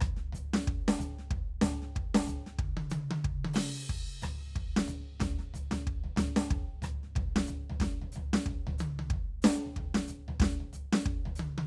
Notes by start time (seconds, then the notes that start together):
0.01 kick, cross-stick, floor tom
0.17 snare
0.33 floor tom, hi-hat pedal
0.54 snare
0.67 kick, floor tom
0.88 snare
0.99 floor tom, hi-hat pedal
1.19 snare
1.31 kick, floor tom
1.62 snare, floor tom, hi-hat pedal
1.82 snare
1.96 kick, floor tom
2.15 snare
2.27 floor tom, hi-hat pedal
2.47 snare
2.59 kick, high tom
2.77 high tom
2.90 hi-hat pedal, high tom
3.11 high tom
3.25 kick
3.45 high tom
3.54 snare, hi-hat pedal, crash
3.90 kick, floor tom
4.22 cross-stick, floor tom, hi-hat pedal
4.56 kick, floor tom
4.77 snare
4.88 floor tom, hi-hat pedal
5.20 kick, snare, floor tom
5.39 snare
5.54 floor tom, hi-hat pedal
5.71 snare, floor tom
5.87 kick
6.04 floor tom
6.17 snare, floor tom, hi-hat pedal
6.37 snare
6.50 kick, floor tom
6.82 cross-stick, floor tom, hi-hat pedal
7.04 snare
7.16 kick, floor tom
7.36 snare
7.47 floor tom, hi-hat pedal
7.70 floor tom
7.80 kick, snare
8.02 floor tom
8.12 floor tom, hi-hat pedal
8.34 snare
8.46 kick, floor tom
8.67 floor tom
8.79 hi-hat pedal, high tom
8.99 high tom
9.10 kick, floor tom
9.42 snare, hi-hat pedal
9.65 floor tom
9.76 kick, floor tom
9.95 snare
10.08 kick, floor tom, hi-hat pedal
10.28 floor tom
10.40 kick, snare
10.61 floor tom
10.73 floor tom, hi-hat pedal
10.93 snare
11.06 kick, floor tom
11.26 floor tom
11.36 hi-hat pedal
11.40 high tom
11.58 high tom